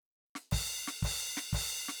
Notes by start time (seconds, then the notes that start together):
0.35 snare
0.51 kick, crash
0.88 snare
1.02 kick, crash
1.37 snare
1.53 kick, crash
1.89 snare